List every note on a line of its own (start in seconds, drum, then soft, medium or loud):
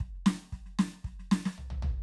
0.01 kick soft
0.01 snare soft
0.15 snare soft
0.27 snare loud
0.42 snare soft
0.53 kick soft
0.53 snare soft
0.66 snare soft
0.79 snare loud
0.94 snare soft
1.05 kick soft
1.05 snare soft
1.20 snare soft
1.32 snare loud
1.46 snare loud
1.58 floor tom medium
1.71 floor tom loud
1.83 floor tom loud